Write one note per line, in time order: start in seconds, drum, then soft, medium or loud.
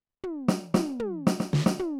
0.23 floor tom loud
0.49 snare loud
0.73 snare loud
0.73 floor tom loud
0.99 mid tom loud
1.27 snare loud
1.40 snare medium
1.53 snare loud
1.66 snare loud
1.79 floor tom loud